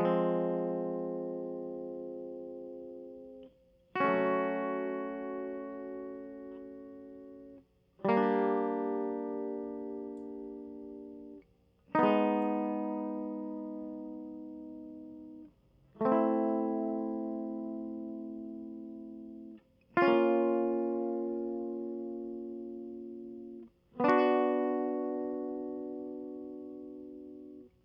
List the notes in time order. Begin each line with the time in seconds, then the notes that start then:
0.00 F3 G#3
0.06 C4
3.96 F#4
4.01 A3 C#4
4.09 F#3
4.16 C3
8.06 G3 A#3
8.18 D4
11.96 D#4
12.00 B3
12.04 G#3
16.02 A3
16.06 C4
16.12 E4
19.98 F4
20.03 C#4
20.09 A#3
24.01 B3
24.05 D4
24.09 F#4